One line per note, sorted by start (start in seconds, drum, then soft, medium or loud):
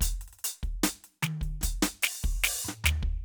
0.01 closed hi-hat loud
0.01 kick medium
0.21 closed hi-hat soft
0.28 closed hi-hat soft
0.33 closed hi-hat soft
0.39 closed hi-hat soft
0.44 closed hi-hat loud
0.63 kick medium
0.63 closed hi-hat soft
0.83 closed hi-hat loud
0.83 snare loud
1.04 closed hi-hat soft
1.23 snare medium
1.23 high tom loud
1.41 kick medium
1.41 closed hi-hat soft
1.61 closed hi-hat loud
1.61 kick medium
1.61 snare soft
1.82 closed hi-hat loud
1.82 snare loud
2.02 open hi-hat loud
2.02 snare loud
2.23 kick medium
2.23 open hi-hat soft
2.44 open hi-hat loud
2.44 snare loud
2.64 hi-hat pedal soft
2.64 mid tom medium
2.68 snare medium
2.84 snare loud
2.84 floor tom loud
3.03 kick medium